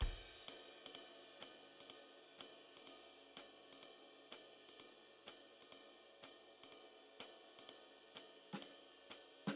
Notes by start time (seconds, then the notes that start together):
0.00 kick, ride, crash
0.48 hi-hat pedal, ride
0.86 ride
0.95 ride
1.40 hi-hat pedal, ride
1.80 ride
1.86 hi-hat pedal, ride
2.38 hi-hat pedal, ride
2.77 ride
2.87 ride
3.37 hi-hat pedal, ride
3.73 ride
3.83 ride
4.31 hi-hat pedal, ride
4.69 ride
4.80 ride
5.26 hi-hat pedal, ride
5.62 ride
5.72 ride
6.22 hi-hat pedal, ride
6.63 ride
6.72 ride
7.20 hi-hat pedal, ride
7.59 ride
7.69 ride
8.15 hi-hat pedal, ride
8.53 snare, ride
8.62 hi-hat pedal, ride
9.10 hi-hat pedal, ride
9.47 snare, ride